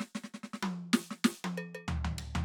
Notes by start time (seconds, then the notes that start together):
0.06 snare
0.15 snare
0.24 snare
0.34 snare
0.43 snare
0.63 high tom
0.93 snare
1.11 snare
1.24 snare
1.44 high tom
1.58 percussion
1.75 percussion
1.88 floor tom
2.05 floor tom
2.18 floor tom
2.35 floor tom